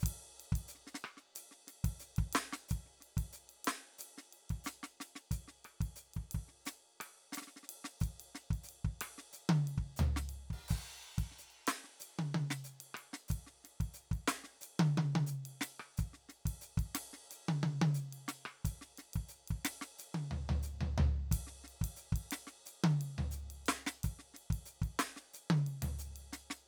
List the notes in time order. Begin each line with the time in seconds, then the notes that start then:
0.01 kick, hi-hat pedal
0.07 ride
0.41 ride
0.53 kick, ride
0.69 hi-hat pedal
0.76 snare
0.88 snare
0.95 snare
1.05 cross-stick
1.18 snare
1.36 hi-hat pedal, ride
1.52 snare
1.68 snare, ride
1.85 kick, ride
2.00 snare, hi-hat pedal
2.17 kick, ride
2.34 snare, ride
2.53 snare
2.69 kick, hi-hat pedal, ride
2.87 snare
3.01 snare, ride
3.18 kick, ride
3.33 snare, hi-hat pedal
3.50 ride
3.65 snare, ride
3.86 snare
3.99 hi-hat pedal, ride
4.18 snare
4.33 ride
4.50 kick, ride
4.65 snare, hi-hat pedal, ride
4.84 snare
5.01 snare, ride
5.16 snare
5.32 kick, hi-hat pedal, ride
5.49 snare
5.65 cross-stick, ride
5.81 kick, ride
5.97 hi-hat pedal
6.14 kick, ride
6.32 kick, ride
6.49 snare
6.66 snare, hi-hat pedal, ride
7.01 cross-stick, ride
7.33 snare, hi-hat pedal, ride
7.38 snare
7.43 snare
7.48 snare
7.57 snare
7.64 snare
7.70 ride
7.85 snare
8.01 kick, hi-hat pedal, ride
8.21 ride
8.36 snare
8.51 kick, ride
8.64 hi-hat pedal
8.70 ride
8.85 kick
9.02 cross-stick, ride
9.19 snare
9.34 hi-hat pedal, ride
9.50 high tom
9.68 ride
9.78 kick
9.97 floor tom, hi-hat pedal
10.17 snare
10.30 ride
10.51 kick, crash
10.69 kick, hi-hat pedal, crash
10.92 hi-hat pedal
11.03 ride
11.19 kick, ride
11.32 snare
11.39 hi-hat pedal
11.51 ride
11.68 snare, ride
11.85 snare
12.01 hi-hat pedal, ride
12.20 high tom
12.35 high tom
12.51 snare
12.65 hi-hat pedal
12.81 ride
12.95 cross-stick, ride
13.14 snare
13.29 kick, hi-hat pedal, ride
13.47 snare
13.65 snare, ride
13.81 kick, ride
13.95 hi-hat pedal
14.12 kick, ride
14.28 snare, ride
14.45 snare
14.62 hi-hat pedal, ride
14.80 high tom
14.98 high tom
15.16 high tom
15.27 hi-hat pedal
15.46 ride
15.62 snare, ride
15.80 cross-stick
15.98 kick, hi-hat pedal, ride
16.14 snare
16.30 snare, ride
16.46 kick, ride
16.62 hi-hat pedal
16.78 kick, ride
16.96 snare, ride
17.14 snare
17.31 hi-hat pedal, ride
17.49 high tom
17.64 high tom
17.82 high tom
17.95 hi-hat pedal
18.13 ride
18.29 snare, ride
18.46 cross-stick
18.65 kick, hi-hat pedal, ride
18.82 snare
18.98 snare, ride
19.14 kick, ride
19.29 hi-hat pedal
19.48 kick, ride
19.66 snare, ride
19.82 snare
19.99 hi-hat pedal, ride
20.15 high tom
20.32 floor tom
20.50 floor tom
20.64 hi-hat pedal
20.82 floor tom
20.99 floor tom
21.32 kick, hi-hat pedal, ride
21.48 snare
21.65 snare
21.69 ride
21.82 kick, ride
21.97 hi-hat pedal
22.13 kick, ride
22.32 snare, ride
22.48 snare
22.67 hi-hat pedal, ride
22.85 high tom
23.02 ride
23.19 floor tom
23.32 snare, hi-hat pedal
23.51 ride
23.67 snare, ride bell
23.87 snare
24.04 kick, hi-hat pedal, ride
24.20 snare
24.35 snare, ride
24.51 kick, ride
24.66 hi-hat pedal
24.83 kick, ride
25.00 snare, ride
25.17 snare
25.34 hi-hat pedal, ride
25.51 high tom
25.67 ride
25.83 floor tom, ride
26.00 hi-hat pedal
26.17 ride
26.33 snare, ride
26.51 snare